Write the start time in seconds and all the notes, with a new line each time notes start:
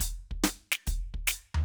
0.03 closed hi-hat, kick
0.31 kick
0.44 closed hi-hat, snare
0.72 snare
0.86 closed hi-hat, kick, snare
1.14 kick
1.27 closed hi-hat, snare
1.54 floor tom